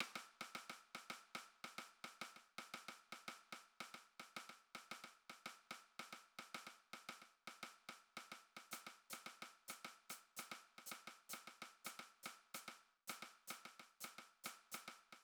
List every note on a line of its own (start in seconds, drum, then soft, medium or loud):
0.01 cross-stick medium
0.16 cross-stick medium
0.41 cross-stick medium
0.55 cross-stick medium
0.70 cross-stick medium
0.95 cross-stick medium
1.10 cross-stick medium
1.35 cross-stick medium
1.64 cross-stick medium
1.78 cross-stick medium
2.04 cross-stick medium
2.21 cross-stick medium
2.36 cross-stick soft
2.58 cross-stick medium
2.74 cross-stick medium
2.89 cross-stick medium
3.12 cross-stick medium
3.28 cross-stick medium
3.53 cross-stick medium
3.80 cross-stick medium
3.94 cross-stick soft
4.20 cross-stick medium
4.37 cross-stick medium
4.49 cross-stick soft
4.75 cross-stick medium
4.91 cross-stick medium
5.04 cross-stick soft
5.30 cross-stick soft
5.46 cross-stick medium
5.71 cross-stick medium
5.99 cross-stick medium
6.13 cross-stick medium
6.39 cross-stick medium
6.55 cross-stick medium
6.67 cross-stick soft
6.93 cross-stick medium
7.09 cross-stick medium
7.22 cross-stick soft
7.47 cross-stick medium
7.63 cross-stick medium
7.89 cross-stick medium
8.17 cross-stick medium
8.32 cross-stick medium
8.57 cross-stick soft
8.71 cross-stick medium
8.71 hi-hat pedal medium
8.87 cross-stick medium
9.10 cross-stick medium
9.10 hi-hat pedal medium
9.26 cross-stick medium
9.42 cross-stick medium
9.68 cross-stick medium
9.68 hi-hat pedal medium
9.85 cross-stick medium
10.10 cross-stick medium
10.10 hi-hat pedal medium
10.37 cross-stick medium
10.37 hi-hat pedal medium
10.52 cross-stick medium
10.78 cross-stick soft
10.86 hi-hat pedal medium
10.92 cross-stick medium
11.07 cross-stick medium
11.29 cross-stick medium
11.29 hi-hat pedal medium
11.47 cross-stick soft
11.62 cross-stick medium
11.85 cross-stick medium
11.85 hi-hat pedal medium
11.99 cross-stick medium
12.23 cross-stick medium
12.23 hi-hat pedal medium
12.54 cross-stick medium
12.54 hi-hat pedal medium
12.68 cross-stick medium
13.08 cross-stick medium
13.08 hi-hat pedal medium
13.22 cross-stick medium
13.48 cross-stick medium
13.48 hi-hat pedal medium
13.65 cross-stick soft
13.80 cross-stick soft
14.01 cross-stick medium
14.01 hi-hat pedal medium
14.18 cross-stick soft
14.44 cross-stick medium
14.44 hi-hat pedal medium
14.72 cross-stick medium
14.72 hi-hat pedal medium
14.88 cross-stick medium
15.13 cross-stick soft